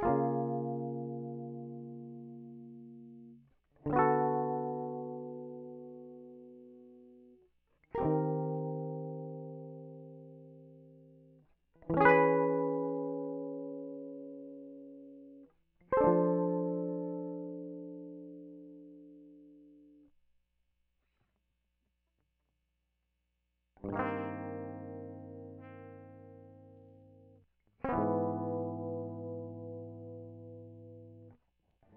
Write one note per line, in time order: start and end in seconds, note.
0.00 3.39 F4
0.00 2.20 G#4
0.06 0.15 E3
0.06 3.47 A#3
0.11 3.55 C#3
3.88 6.94 D3
3.94 7.39 B3
3.94 7.49 F#4
3.99 6.58 A4
3.99 4.08 C5
7.95 11.41 G4
7.95 11.27 A#4
8.01 11.44 C4
8.06 11.47 D#3
11.91 15.36 E3
11.98 15.49 C#4
11.98 15.48 G#4
12.06 15.52 B4
15.93 19.38 C5
15.98 20.11 D4
15.98 20.05 A4
16.06 19.75 F3
16.06 16.12 A3
23.86 27.45 G2
23.91 23.97 A#2
23.91 27.42 D#3
23.97 27.45 A#3
23.97 27.39 C4
27.85 28.12 C4
27.90 31.39 B3
27.94 31.34 E3
27.98 31.37 G#2
27.98 28.03 B2